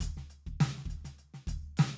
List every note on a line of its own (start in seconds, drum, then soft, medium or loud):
0.01 kick medium
0.01 percussion loud
0.17 snare soft
0.30 percussion soft
0.47 kick soft
0.47 percussion soft
0.60 snare loud
0.60 percussion loud
0.78 snare soft
0.86 kick soft
0.90 percussion medium
1.05 snare soft
1.05 percussion medium
1.19 percussion soft
1.34 snare soft
1.47 kick medium
1.47 percussion medium
1.77 snare loud
1.77 percussion medium
1.79 percussion medium
1.84 snare soft